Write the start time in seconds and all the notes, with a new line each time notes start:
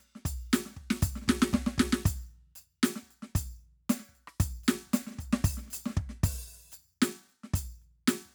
0.01 percussion
0.16 snare
0.26 kick, percussion
0.51 snare, percussion
0.54 percussion
0.66 snare
0.69 snare
0.72 snare
0.77 kick
0.91 snare
1.03 kick, percussion
1.16 snare
1.22 snare
1.25 snare
1.27 kick, snare
1.30 snare
1.42 snare
1.54 kick, snare
1.67 snare
1.78 kick, snare
1.93 snare
2.06 kick, percussion
2.56 percussion
2.84 snare, percussion
2.96 snare
3.03 kick
3.11 percussion
3.23 snare
3.36 kick, percussion
3.90 snare, percussion
4.09 kick
4.16 percussion
4.28 cross-stick
4.40 kick, percussion
4.64 percussion
4.69 snare, percussion
4.87 kick
4.94 snare, percussion
5.07 snare
5.11 snare
5.15 kick, snare
5.21 percussion
5.33 snare
5.45 kick, percussion
5.58 snare
5.62 snare
5.66 snare
5.68 snare
5.70 snare, percussion
5.73 snare, percussion
5.86 snare
5.90 snare
5.97 kick
6.10 snare
6.24 kick, percussion
6.73 percussion
7.02 snare, percussion
7.30 percussion
7.44 snare
7.54 kick, percussion
7.82 percussion
8.08 snare, percussion
8.26 kick